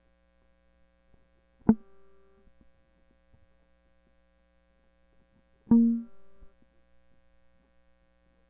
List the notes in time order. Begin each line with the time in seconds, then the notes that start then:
1.69 A3
5.72 A#3